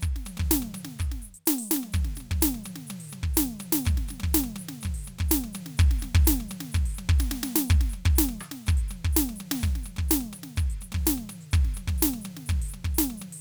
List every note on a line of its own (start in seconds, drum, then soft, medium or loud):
0.01 kick medium
0.01 hi-hat pedal medium
0.16 snare soft
0.26 hi-hat pedal medium
0.26 high tom medium
0.37 kick medium
0.37 high tom medium
0.51 snare loud
0.51 hi-hat pedal medium
0.62 high tom medium
0.74 hi-hat pedal medium
0.74 high tom medium
0.85 snare medium
0.99 kick medium
0.99 cross-stick soft
0.99 hi-hat pedal medium
1.12 snare soft
1.22 hi-hat pedal medium
1.34 open hi-hat medium
1.46 snare loud
1.46 hi-hat pedal loud
1.59 open hi-hat loud
1.68 snare loud
1.68 hi-hat pedal medium
1.77 snare medium
1.83 high tom medium
1.93 kick medium
1.93 hi-hat pedal medium
1.93 high tom medium
2.05 snare soft
2.16 snare soft
2.16 hi-hat pedal medium
2.20 high tom soft
2.31 kick medium
2.31 high tom medium
2.41 snare loud
2.41 hi-hat pedal medium
2.54 high tom medium
2.64 hi-hat pedal medium
2.64 high tom medium
2.76 snare medium
2.87 hi-hat pedal medium
2.87 high tom medium
3.00 open hi-hat medium
3.09 hi-hat pedal medium
3.09 high tom medium
3.23 kick medium
3.34 snare loud
3.34 hi-hat pedal medium
3.39 high tom medium
3.60 hi-hat pedal medium
3.60 high tom medium
3.73 snare loud
3.85 kick medium
3.85 hi-hat pedal medium
3.85 high tom medium
3.98 snare medium
4.08 snare soft
4.08 hi-hat pedal medium
4.08 high tom medium
4.20 kick medium
4.20 high tom medium
4.34 snare loud
4.34 hi-hat pedal medium
4.44 high tom medium
4.56 hi-hat pedal medium
4.56 high tom medium
4.69 snare medium
4.81 hi-hat pedal medium
4.81 high tom medium
4.85 kick medium
4.94 open hi-hat medium
5.04 hi-hat pedal medium
5.04 high tom medium
5.19 kick medium
5.19 high tom medium
5.29 snare loud
5.29 hi-hat pedal medium
5.44 high tom medium
5.53 hi-hat pedal medium
5.53 high tom medium
5.66 snare medium
5.77 kick loud
5.77 hi-hat pedal medium
5.77 high tom medium
5.91 snare medium
5.99 snare medium
5.99 hi-hat pedal medium
6.04 high tom medium
6.15 kick loud
6.15 high tom medium
6.25 snare loud
6.25 hi-hat pedal medium
6.40 high tom medium
6.49 hi-hat pedal medium
6.49 high tom medium
6.61 snare medium
6.72 kick medium
6.72 hi-hat pedal medium
6.77 high tom medium
6.86 open hi-hat medium
6.95 hi-hat pedal medium
6.99 high tom medium
7.09 kick loud
7.19 snare medium
7.19 hi-hat pedal medium
7.31 snare medium
7.43 snare loud
7.43 hi-hat pedal medium
7.56 snare loud
7.68 kick loud
7.68 hi-hat pedal medium
7.68 high tom soft
7.81 snare medium
7.90 hi-hat pedal medium
7.94 high tom medium
8.05 kick loud
8.05 high tom medium
8.16 snare loud
8.16 hi-hat pedal medium
8.29 high tom medium
8.40 cross-stick medium
8.40 hi-hat pedal medium
8.52 snare medium
8.66 kick loud
8.66 hi-hat pedal medium
8.66 high tom medium
8.77 open hi-hat medium
8.88 hi-hat pedal medium
8.88 high tom medium
9.05 kick medium
9.13 snare loud
9.13 hi-hat pedal medium
9.29 high tom medium
9.36 hi-hat pedal medium
9.40 high tom medium
9.52 snare loud
9.61 kick medium
9.61 hi-hat pedal medium
9.61 high tom soft
9.76 snare soft
9.84 hi-hat pedal medium
9.84 high tom medium
9.96 kick medium
9.96 high tom medium
10.09 snare loud
10.09 hi-hat pedal medium
10.21 high tom medium
10.33 hi-hat pedal medium
10.33 high tom medium
10.44 snare medium
10.56 kick medium
10.56 hi-hat pedal medium
10.56 high tom medium
10.70 open hi-hat medium
10.81 hi-hat pedal medium
10.81 high tom soft
10.92 kick medium
10.92 high tom medium
11.06 snare loud
11.06 hi-hat pedal medium
11.18 high tom medium
11.29 hi-hat pedal medium
11.29 high tom medium
11.41 open hi-hat soft
11.51 kick loud
11.51 hi-hat pedal medium
11.51 high tom medium
11.65 snare soft
11.74 hi-hat pedal medium
11.74 high tom medium
11.88 kick medium
11.88 high tom medium
11.98 hi-hat pedal medium
12.03 snare loud
12.14 high tom medium
12.21 hi-hat pedal medium
12.21 high tom medium
12.37 snare medium
12.46 kick medium
12.46 hi-hat pedal loud
12.50 high tom medium
12.62 open hi-hat medium
12.69 hi-hat pedal medium
12.74 high tom medium
12.85 kick medium
12.85 high tom medium
12.95 hi-hat pedal loud
12.99 snare loud
13.10 high tom medium
13.18 hi-hat pedal medium
13.22 high tom medium
13.33 open hi-hat medium